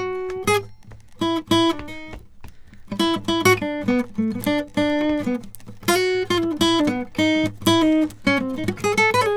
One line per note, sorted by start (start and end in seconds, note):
0.01 0.46 F#4
0.48 0.64 G#4
1.22 1.44 E4
1.52 1.71 E4
1.71 1.86 D4
1.89 2.18 D#4
3.00 3.19 E4
3.29 3.41 E4
3.41 3.57 D4
3.46 3.58 F#4
3.62 3.86 D4
3.89 4.07 B3
4.19 4.32 A3
4.32 4.43 B3
4.47 4.65 D4
4.78 5.29 D4
5.28 5.41 B3
5.89 6.00 F4
6.00 6.28 F#4
6.31 6.43 F4
6.43 6.52 E4
6.53 6.61 D4
6.61 6.80 E4
6.80 6.96 D4
6.88 7.07 B3
7.19 7.51 D#4
7.67 7.82 E4
7.82 8.11 D#4
8.28 8.38 C#4
8.38 8.59 C4
8.85 8.96 G#4
8.98 9.12 A4
9.15 9.26 B4
9.27 9.36 G#4